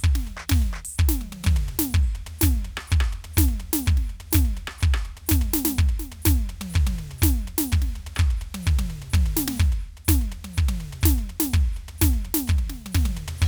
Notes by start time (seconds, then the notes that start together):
0.01 kick, floor tom, hi-hat pedal
0.15 snare
0.22 hi-hat pedal
0.27 floor tom
0.37 percussion
0.49 kick, snare, hi-hat pedal
0.62 floor tom
0.70 percussion, hi-hat pedal
0.85 open hi-hat
0.95 floor tom, hi-hat pedal
0.99 kick
1.09 snare
1.21 high tom
1.32 high tom
1.44 kick, hi-hat pedal, high tom
1.56 floor tom
1.65 floor tom, hi-hat pedal
1.79 snare
1.90 hi-hat pedal
1.94 kick
2.03 open hi-hat
2.15 floor tom
2.27 floor tom
2.39 snare, hi-hat pedal
2.43 kick
2.65 floor tom
2.77 cross-stick
2.88 floor tom, hi-hat pedal
2.92 kick
3.01 cross-stick
3.09 floor tom, hi-hat pedal
3.24 floor tom
3.34 kick, hi-hat pedal
3.38 snare
3.49 floor tom
3.55 hi-hat pedal
3.60 floor tom
3.73 snare
3.83 floor tom, hi-hat pedal
3.88 kick
3.97 snare
4.04 hi-hat pedal
4.10 floor tom
4.20 floor tom
4.31 kick, snare, hi-hat pedal
4.45 floor tom
4.52 hi-hat pedal
4.57 floor tom
4.68 cross-stick
4.79 floor tom, hi-hat pedal
4.83 kick
4.94 cross-stick
5.01 hi-hat pedal
5.05 floor tom
5.17 floor tom
5.27 snare, hi-hat pedal
5.32 kick
5.42 floor tom
5.49 hi-hat pedal
5.54 snare
5.65 snare
5.75 kick, hi-hat pedal
5.89 floor tom
5.96 snare, hi-hat pedal
6.12 floor tom
6.22 snare, hi-hat pedal
6.27 kick
6.44 hi-hat pedal
6.49 floor tom
6.61 high tom
6.70 hi-hat pedal
6.74 kick, floor tom
6.87 high tom
6.91 hi-hat pedal
6.99 floor tom
7.11 floor tom
7.19 kick, hi-hat pedal
7.24 snare
7.40 hi-hat pedal
7.48 floor tom
7.58 snare
7.67 hi-hat pedal
7.72 kick, floor tom
7.82 snare
7.89 hi-hat pedal
7.96 floor tom
8.07 floor tom
8.16 kick, cross-stick, hi-hat pedal
8.31 floor tom
8.38 floor tom, hi-hat pedal
8.55 high tom
8.63 hi-hat pedal
8.67 kick, floor tom
8.79 high tom
8.85 hi-hat pedal
8.90 floor tom
9.02 floor tom
9.10 kick, hi-hat pedal
9.15 high tom
9.26 floor tom
9.37 snare
9.48 snare
9.56 kick, hi-hat pedal
9.72 floor tom
9.79 hi-hat pedal
9.97 floor tom
10.05 kick, snare, hi-hat pedal
10.21 floor tom
10.32 floor tom
10.45 high tom
10.54 floor tom, hi-hat pedal
10.58 kick
10.69 high tom
10.76 hi-hat pedal
10.80 floor tom
10.93 floor tom
11.01 kick, hi-hat pedal
11.06 snare
11.18 floor tom
11.30 floor tom
11.40 snare
11.51 kick, floor tom, hi-hat pedal
11.73 floor tom, hi-hat pedal
11.88 floor tom
11.98 kick, snare, hi-hat pedal
12.13 floor tom
12.21 hi-hat pedal
12.25 floor tom
12.34 snare
12.46 kick, floor tom, hi-hat pedal
12.59 high tom
12.67 snare, hi-hat pedal
12.86 high tom
12.92 kick, snare, hi-hat pedal
13.06 high tom
13.14 floor tom, hi-hat pedal
13.28 floor tom
13.38 kick, hi-hat pedal
13.43 crash